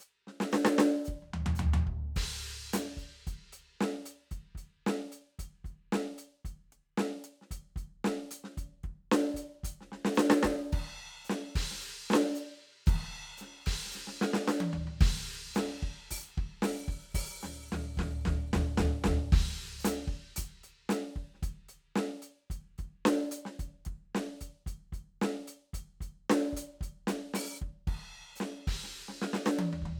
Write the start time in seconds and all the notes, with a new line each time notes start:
0.01 hi-hat pedal
0.28 snare
0.41 snare
0.53 snare, hi-hat pedal
0.66 snare
0.79 snare
1.06 kick, hi-hat pedal
1.23 floor tom
1.34 floor tom
1.47 floor tom
1.56 hi-hat pedal
1.60 floor tom
1.74 floor tom
1.88 kick
2.17 kick, hi-hat pedal, crash
2.74 closed hi-hat, snare
2.98 closed hi-hat, kick
3.28 closed hi-hat, kick
3.53 closed hi-hat
3.82 snare
4.06 closed hi-hat
4.32 closed hi-hat, kick
4.56 closed hi-hat, kick
4.87 snare
5.13 closed hi-hat
5.40 closed hi-hat, kick
5.65 closed hi-hat, kick
5.93 snare
6.19 closed hi-hat
6.46 closed hi-hat, kick
6.73 closed hi-hat
6.98 snare
7.25 closed hi-hat
7.42 snare
7.52 closed hi-hat, kick
7.77 closed hi-hat, kick
8.05 snare
8.32 closed hi-hat
8.45 snare
8.58 closed hi-hat, kick
8.84 kick, closed hi-hat
9.12 snare
9.35 closed hi-hat, kick
9.64 closed hi-hat, kick
9.82 snare
9.93 snare
10.06 snare
10.15 snare, hi-hat pedal
10.31 snare
10.44 kick, snare
10.73 kick, crash
11.25 hi-hat pedal
11.30 snare
11.56 kick, crash
11.72 snare
11.81 hi-hat pedal
12.11 snare
12.14 snare
12.36 hi-hat pedal
12.87 kick, hi-hat pedal, crash
13.38 snare, hi-hat pedal
13.61 hi-hat pedal
13.67 kick, crash
13.86 snare
13.92 snare, hi-hat pedal
14.08 snare
14.22 snare
14.34 snare
14.49 snare, hi-hat pedal
14.61 high tom
14.74 kick, floor tom
14.88 floor tom
15.02 kick, crash
15.55 snare, hi-hat pedal, crash
15.83 kick, closed hi-hat
16.12 open hi-hat, kick
16.38 open hi-hat, kick
16.63 open hi-hat, snare
16.89 open hi-hat, kick
17.15 open hi-hat, kick
17.44 snare, floor tom
17.73 snare, floor tom
17.98 kick, snare, floor tom
18.26 kick, snare, floor tom
18.54 kick, snare, floor tom
18.78 kick, snare, floor tom
19.05 kick, snare, floor tom
19.33 kick, crash
19.81 hi-hat pedal
19.85 closed hi-hat, snare
20.08 kick, closed hi-hat
20.37 closed hi-hat, kick
20.64 closed hi-hat
20.90 closed hi-hat, snare
21.17 kick, closed hi-hat
21.35 snare
21.43 closed hi-hat, kick
21.69 closed hi-hat
21.97 snare
22.23 closed hi-hat
22.51 closed hi-hat, kick
22.79 closed hi-hat, kick
23.06 snare
23.32 closed hi-hat
23.46 snare
23.60 closed hi-hat, kick
23.86 kick, closed hi-hat
24.16 snare
24.42 closed hi-hat, kick
24.67 closed hi-hat, kick
24.93 closed hi-hat, kick
25.22 snare
25.48 closed hi-hat
25.74 closed hi-hat, kick
26.01 closed hi-hat, kick
26.31 snare
26.54 kick
26.58 closed hi-hat
26.82 closed hi-hat, kick
27.08 closed hi-hat, snare
27.35 open hi-hat, snare
27.58 hi-hat pedal
27.62 kick
27.88 kick, crash
28.37 hi-hat pedal
28.41 snare
28.68 kick, crash
28.84 snare
29.09 snare
29.23 snare
29.34 snare
29.46 snare, hi-hat pedal
29.60 high tom
29.74 floor tom
29.83 kick, floor tom